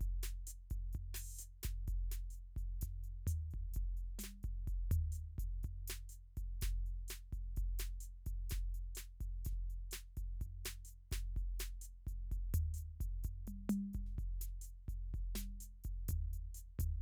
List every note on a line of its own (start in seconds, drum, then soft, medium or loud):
0.01 closed hi-hat soft
0.01 kick soft
0.23 open hi-hat medium
0.23 snare soft
0.47 hi-hat pedal medium
0.70 closed hi-hat soft
0.70 kick soft
0.77 kick soft
0.93 closed hi-hat soft
0.93 kick soft
1.14 open hi-hat medium
1.14 snare soft
1.39 closed hi-hat soft
1.39 hi-hat pedal medium
1.63 closed hi-hat medium
1.63 kick soft
1.63 snare soft
1.71 kick soft
1.88 closed hi-hat soft
1.88 kick soft
2.12 closed hi-hat medium
2.12 snare soft
2.31 hi-hat pedal soft
2.35 closed hi-hat soft
2.57 kick soft
2.57 closed hi-hat soft
2.82 closed hi-hat medium
2.82 kick soft
2.82 snare soft
3.04 closed hi-hat soft
3.27 floor tom medium
3.27 hi-hat pedal medium
3.27 open hi-hat medium
3.51 kick soft
3.51 closed hi-hat soft
3.74 closed hi-hat soft
3.74 kick soft
3.97 closed hi-hat soft
4.19 closed hi-hat medium
4.19 snare soft
4.19 hi-hat pedal medium
4.19 mid tom soft
4.24 snare soft
4.43 kick soft
4.43 closed hi-hat soft
4.68 kick soft
4.68 closed hi-hat soft
4.92 closed hi-hat medium
4.92 floor tom medium
5.12 closed hi-hat soft
5.12 hi-hat pedal medium
5.39 closed hi-hat soft
5.39 kick soft
5.44 kick soft
5.63 kick soft
5.63 closed hi-hat soft
5.88 closed hi-hat medium
5.88 snare soft
6.10 closed hi-hat soft
6.10 hi-hat pedal medium
6.37 closed hi-hat soft
6.37 kick soft
6.62 closed hi-hat medium
6.62 kick soft
6.62 snare soft
6.86 closed hi-hat soft
7.08 closed hi-hat medium
7.08 snare soft
7.08 hi-hat pedal medium
7.33 closed hi-hat soft
7.33 kick soft
7.57 closed hi-hat soft
7.57 kick soft
7.79 closed hi-hat medium
7.79 snare soft
8.01 closed hi-hat soft
8.01 hi-hat pedal medium
8.26 closed hi-hat soft
8.26 kick soft
8.50 closed hi-hat medium
8.50 kick soft
8.50 snare soft
8.58 kick soft
8.75 closed hi-hat soft
8.95 closed hi-hat medium
8.95 snare soft
8.95 hi-hat pedal medium
9.21 closed hi-hat soft
9.21 kick soft
9.45 closed hi-hat medium
9.45 kick soft
9.45 snare soft
9.53 kick soft
9.70 closed hi-hat soft
9.92 closed hi-hat medium
9.92 snare soft
9.92 hi-hat pedal medium
10.17 closed hi-hat soft
10.17 kick soft
10.41 closed hi-hat soft
10.41 kick soft
10.47 kick soft
10.65 closed hi-hat medium
10.65 snare soft
10.85 hi-hat pedal medium
10.89 closed hi-hat soft
11.12 closed hi-hat soft
11.12 kick soft
11.12 snare soft
11.18 kick soft
11.37 closed hi-hat soft
11.37 kick soft
11.42 kick soft
11.60 closed hi-hat medium
11.60 snare soft
11.82 closed hi-hat soft
11.82 hi-hat pedal medium
12.07 closed hi-hat soft
12.07 kick soft
12.13 kick soft
12.32 kick soft
12.32 closed hi-hat soft
12.37 kick soft
12.54 closed hi-hat medium
12.54 floor tom medium
12.74 hi-hat pedal medium
12.78 closed hi-hat soft
13.01 closed hi-hat soft
13.01 kick soft
13.07 kick soft
13.24 closed hi-hat soft
13.24 kick soft
13.47 closed hi-hat soft
13.47 mid tom medium
13.70 hi-hat pedal medium
13.70 mid tom loud
13.70 open hi-hat medium
13.94 kick soft
13.94 closed hi-hat soft
14.01 kick soft
14.07 snare soft
14.19 kick soft
14.19 closed hi-hat soft
14.41 closed hi-hat medium
14.41 snare soft
14.62 hi-hat pedal medium
14.66 closed hi-hat soft
14.89 closed hi-hat soft
14.89 kick soft
15.14 closed hi-hat soft
15.14 kick soft
15.20 kick soft
15.36 closed hi-hat medium
15.36 snare soft
15.36 mid tom soft
15.61 closed hi-hat soft
15.61 hi-hat pedal medium
15.84 closed hi-hat soft
15.84 kick soft
16.09 closed hi-hat medium
16.09 kick soft
16.09 floor tom medium
16.33 closed hi-hat soft
16.55 closed hi-hat soft
16.55 hi-hat pedal medium
16.79 closed hi-hat medium
16.79 kick soft
16.79 floor tom medium
16.87 kick soft